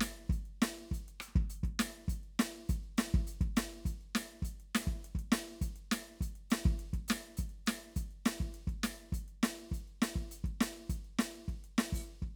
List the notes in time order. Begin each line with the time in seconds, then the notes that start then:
0.01 closed hi-hat, snare
0.30 closed hi-hat, kick
0.46 closed hi-hat
0.62 closed hi-hat, snare
0.92 closed hi-hat, kick
1.08 closed hi-hat
1.20 closed hi-hat, cross-stick
1.28 snare
1.36 kick
1.50 closed hi-hat
1.64 kick, closed hi-hat
1.80 closed hi-hat, snare
1.88 snare
2.08 closed hi-hat, kick
2.24 closed hi-hat
2.39 closed hi-hat, snare
2.69 closed hi-hat, kick
2.84 closed hi-hat
2.98 closed hi-hat, snare
3.08 snare
3.14 kick
3.27 closed hi-hat
3.41 kick, closed hi-hat
3.57 closed hi-hat, snare
3.86 closed hi-hat, kick
4.01 closed hi-hat
4.15 closed hi-hat, snare
4.43 closed hi-hat, kick
4.60 closed hi-hat
4.75 closed hi-hat, snare
4.83 snare
4.87 kick
5.01 snare, closed hi-hat
5.15 kick, closed hi-hat
5.32 closed hi-hat, snare
5.62 closed hi-hat, kick
5.76 closed hi-hat
5.92 closed hi-hat, snare
6.21 closed hi-hat, kick
6.36 closed hi-hat
6.51 closed hi-hat, snare
6.66 kick
6.80 closed hi-hat
6.94 kick, closed hi-hat
7.08 closed hi-hat, snare
7.37 closed hi-hat, kick
7.50 closed hi-hat
7.67 closed hi-hat, snare
7.96 closed hi-hat, kick
8.01 snare
8.11 closed hi-hat
8.26 closed hi-hat, snare
8.41 kick
8.54 closed hi-hat
8.68 kick, closed hi-hat
8.84 closed hi-hat, snare
9.13 closed hi-hat, kick
9.28 closed hi-hat
9.43 closed hi-hat, snare
9.57 snare
9.72 closed hi-hat, kick, snare
9.88 closed hi-hat
10.02 closed hi-hat, snare
10.16 kick
10.31 closed hi-hat
10.44 kick, closed hi-hat
10.61 closed hi-hat, snare
10.74 snare
10.90 closed hi-hat, kick
11.05 closed hi-hat
11.19 closed hi-hat, snare
11.48 kick, closed hi-hat
11.64 closed hi-hat
11.78 snare
11.92 open hi-hat, kick, snare
12.01 hi-hat pedal
12.22 kick